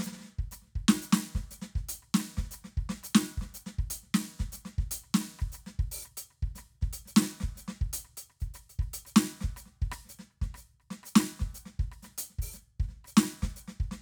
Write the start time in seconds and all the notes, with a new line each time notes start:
0.01 snare, hi-hat pedal
0.08 snare
0.14 snare
0.21 snare
0.25 snare
0.33 snare
0.36 kick, snare
0.42 snare
0.53 cross-stick, snare, hi-hat pedal
0.66 snare
0.77 kick, cross-stick
0.90 snare
1.00 snare, hi-hat pedal
1.14 snare
1.18 cross-stick
1.36 kick, snare
1.50 snare
1.52 snare, hi-hat pedal
1.63 snare
1.77 kick, snare
1.90 closed hi-hat
2.04 cross-stick
2.16 snare
2.21 cross-stick
2.29 snare
2.38 kick, snare
2.44 snare
2.52 cross-stick, hi-hat pedal
2.66 snare
2.78 kick, cross-stick
2.91 snare
3.03 cross-stick, snare, hi-hat pedal
3.16 snare
3.30 snare
3.39 kick, snare
3.54 snare, hi-hat pedal
3.67 snare
3.79 kick, cross-stick, snare
3.92 open hi-hat
4.04 snare
4.16 snare
4.25 snare
4.29 cross-stick
4.41 kick, snare
4.54 snare, hi-hat pedal
4.66 snare
4.79 kick, snare
4.92 closed hi-hat
5.05 cross-stick
5.16 snare
5.23 cross-stick
5.29 cross-stick
5.40 kick, cross-stick
5.53 cross-stick, hi-hat pedal
5.68 snare
5.80 kick, cross-stick
5.93 open hi-hat
6.04 cross-stick, hi-hat pedal
6.18 closed hi-hat
6.32 cross-stick
6.44 kick
6.56 cross-stick, snare, closed hi-hat, hi-hat pedal, crash
6.83 kick, snare
6.94 closed hi-hat
7.07 snare, hi-hat pedal
7.18 snare
7.23 snare
7.31 snare
7.42 kick, snare
7.56 snare, hi-hat pedal
7.69 snare
7.81 kick, snare
7.94 closed hi-hat
8.06 cross-stick
8.18 closed hi-hat
8.31 cross-stick
8.42 open hi-hat, kick
8.55 cross-stick, closed hi-hat, hi-hat pedal
8.71 closed hi-hat
8.80 kick, cross-stick
8.95 closed hi-hat
9.07 cross-stick, hi-hat pedal
9.17 snare
9.32 snare
9.42 kick, snare
9.57 cross-stick, snare, hi-hat pedal
9.67 snare
9.83 kick, snare
9.93 cross-stick
10.05 snare
10.10 hi-hat pedal
10.20 snare
10.32 cross-stick
10.43 kick, snare
10.55 cross-stick, snare, hi-hat pedal
10.81 cross-stick
10.92 snare
11.04 cross-stick, snare, hi-hat pedal
11.17 snare
11.21 cross-stick
11.29 snare
11.41 kick, snare
11.54 snare, hi-hat pedal
11.67 snare
11.81 kick, snare
11.93 cross-stick
12.03 cross-stick, snare, hi-hat pedal
12.19 closed hi-hat
12.31 snare
12.40 open hi-hat, kick
12.55 snare, hi-hat pedal
12.61 closed hi-hat
12.81 kick, snare
12.90 snare
12.94 snare
13.06 cross-stick, hi-hat pedal
13.18 snare
13.24 cross-stick
13.31 snare
13.44 kick, snare
13.56 snare, hi-hat pedal
13.69 snare
13.81 kick, snare
13.92 snare